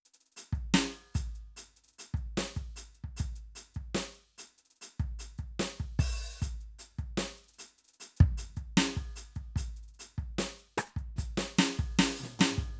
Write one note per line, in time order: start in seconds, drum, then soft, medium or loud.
0.05 closed hi-hat medium
0.14 closed hi-hat medium
0.20 closed hi-hat soft
0.26 closed hi-hat soft
0.32 closed hi-hat soft
0.36 closed hi-hat loud
0.53 kick medium
0.53 closed hi-hat soft
0.73 closed hi-hat loud
0.73 kick soft
0.73 snare loud
0.95 closed hi-hat soft
1.14 closed hi-hat loud
1.14 kick medium
1.35 closed hi-hat soft
1.47 closed hi-hat soft
1.56 closed hi-hat loud
1.66 closed hi-hat soft
1.76 closed hi-hat medium
1.84 closed hi-hat soft
1.88 closed hi-hat soft
1.93 closed hi-hat soft
1.99 closed hi-hat loud
2.14 kick medium
2.14 closed hi-hat soft
2.37 closed hi-hat loud
2.37 snare loud
2.56 kick medium
2.56 closed hi-hat medium
2.76 closed hi-hat loud
2.94 closed hi-hat soft
3.04 kick soft
3.17 closed hi-hat loud
3.17 kick medium
3.36 closed hi-hat medium
3.55 closed hi-hat loud
3.74 kick soft
3.74 closed hi-hat soft
3.95 closed hi-hat loud
3.95 snare loud
4.14 closed hi-hat soft
4.38 closed hi-hat loud
4.46 closed hi-hat soft
4.58 closed hi-hat medium
4.65 closed hi-hat soft
4.70 closed hi-hat soft
4.76 closed hi-hat soft
4.81 closed hi-hat loud
4.99 kick medium
4.99 closed hi-hat soft
5.19 closed hi-hat loud
5.38 kick soft
5.38 closed hi-hat soft
5.60 closed hi-hat loud
5.60 snare loud
5.79 kick medium
5.79 closed hi-hat soft
5.99 open hi-hat loud
5.99 kick loud
6.39 closed hi-hat loud
6.39 kick medium
6.39 hi-hat pedal medium
6.61 closed hi-hat soft
6.79 closed hi-hat loud
6.98 kick medium
6.98 closed hi-hat soft
7.18 closed hi-hat loud
7.18 snare loud
7.37 closed hi-hat soft
7.43 closed hi-hat soft
7.48 closed hi-hat medium
7.59 closed hi-hat loud
7.68 closed hi-hat soft
7.78 closed hi-hat soft
7.84 closed hi-hat soft
7.93 closed hi-hat soft
8.00 closed hi-hat loud
8.17 kick loud
8.17 closed hi-hat medium
8.37 closed hi-hat loud
8.56 kick soft
8.56 closed hi-hat medium
8.77 closed hi-hat loud
8.77 snare loud
8.96 kick medium
8.96 closed hi-hat soft
9.16 closed hi-hat loud
9.35 kick soft
9.35 closed hi-hat soft
9.56 closed hi-hat loud
9.56 kick medium
9.76 closed hi-hat soft
9.83 closed hi-hat soft
9.88 closed hi-hat soft
9.94 closed hi-hat soft
9.99 closed hi-hat loud
10.18 kick medium
10.18 closed hi-hat soft
10.38 closed hi-hat loud
10.38 snare loud
10.59 closed hi-hat soft
10.78 cross-stick medium
10.78 high tom loud
10.96 kick medium
10.96 closed hi-hat soft
11.16 closed hi-hat loud
11.16 kick medium
11.16 snare soft
11.38 closed hi-hat loud
11.38 snare loud
11.58 open hi-hat loud
11.58 snare loud
11.78 kick medium
11.78 open hi-hat soft
11.99 open hi-hat loud
11.99 snare loud
12.20 hi-hat pedal soft
12.20 mid tom medium
12.24 snare medium
12.39 snare loud
12.39 floor tom loud
12.58 kick medium